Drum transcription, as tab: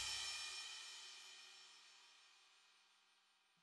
Snare |------------|----------o-|